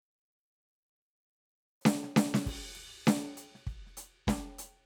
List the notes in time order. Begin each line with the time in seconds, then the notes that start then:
1.81 snare, hi-hat pedal
2.03 snare
2.16 snare
2.34 snare
2.46 kick, crash
2.75 snare, floor tom, ride
3.06 snare, hi-hat pedal
3.37 closed hi-hat
3.54 snare
3.67 closed hi-hat, kick
3.86 snare
3.97 closed hi-hat
4.27 kick, snare
4.59 closed hi-hat